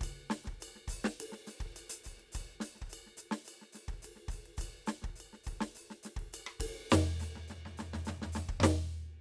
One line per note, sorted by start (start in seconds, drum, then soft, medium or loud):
0.01 kick medium
0.01 hi-hat pedal medium
0.01 ride bell medium
0.30 snare medium
0.30 hi-hat pedal soft
0.30 ride bell soft
0.44 kick soft
0.44 snare soft
0.44 ride soft
0.60 hi-hat pedal soft
0.60 ride bell medium
0.75 snare soft
0.88 kick medium
0.88 hi-hat pedal loud
0.88 ride soft
1.04 snare medium
1.04 ride soft
1.20 hi-hat pedal medium
1.20 ride loud
1.32 snare soft
1.47 snare soft
1.47 hi-hat pedal medium
1.47 ride soft
1.60 kick soft
1.60 ride soft
1.76 hi-hat pedal medium
1.76 ride bell medium
1.90 open hi-hat loud
2.04 kick soft
2.04 hi-hat pedal medium
2.04 ride bell soft
2.17 snare soft
2.17 ride soft
2.32 kick soft
2.32 hi-hat pedal medium
2.32 ride bell medium
2.60 snare medium
2.60 hi-hat pedal medium
2.60 ride bell soft
2.75 snare soft
2.75 ride soft
2.82 kick soft
2.90 hi-hat pedal medium
2.90 ride bell medium
3.06 snare soft
3.17 hi-hat pedal medium
3.17 ride soft
3.31 snare medium
3.31 ride soft
3.45 hi-hat pedal medium
3.45 ride bell medium
3.62 snare soft
3.73 snare soft
3.73 hi-hat pedal medium
3.73 ride soft
3.88 kick soft
3.88 ride soft
4.02 hi-hat pedal medium
4.02 ride medium
4.16 snare soft
4.28 kick medium
4.28 hi-hat pedal medium
4.28 ride soft
4.46 ride soft
4.57 kick medium
4.57 hi-hat pedal medium
4.57 ride soft
4.57 ride bell medium
4.87 snare medium
4.87 hi-hat pedal medium
4.87 ride bell soft
5.02 kick soft
5.02 snare soft
5.02 ride soft
5.16 hi-hat pedal medium
5.20 ride bell medium
5.33 snare soft
5.44 kick soft
5.44 hi-hat pedal soft
5.48 ride soft
5.61 snare medium
5.61 ride soft
5.75 cross-stick soft
5.75 hi-hat pedal medium
5.75 ride soft
5.90 snare soft
6.03 snare soft
6.03 hi-hat pedal medium
6.03 ride soft
6.16 kick medium
6.16 ride soft
6.33 hi-hat pedal medium
6.33 ride bell medium
6.47 cross-stick medium
6.60 kick medium
6.60 hi-hat pedal medium
6.60 ride loud
6.90 snare loud
6.90 floor tom loud
6.90 hi-hat pedal medium
7.20 snare soft
7.20 floor tom soft
7.20 hi-hat pedal medium
7.35 snare soft
7.35 floor tom soft
7.48 snare soft
7.48 floor tom soft
7.48 hi-hat pedal soft
7.65 snare soft
7.65 floor tom soft
7.77 snare soft
7.77 floor tom medium
7.77 hi-hat pedal medium
7.93 snare soft
7.93 floor tom medium
8.05 snare medium
8.05 floor tom medium
8.05 hi-hat pedal medium
8.22 snare medium
8.22 floor tom medium
8.32 snare medium
8.32 hi-hat pedal medium
8.37 floor tom medium
8.49 kick medium
8.60 snare loud
8.60 floor tom loud
8.60 hi-hat pedal soft